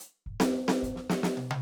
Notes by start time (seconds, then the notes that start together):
0.00 closed hi-hat
0.26 kick
0.40 closed hi-hat, snare
0.68 snare
0.82 closed hi-hat, kick
0.96 snare
1.10 snare
1.23 snare
1.37 high tom
1.51 high tom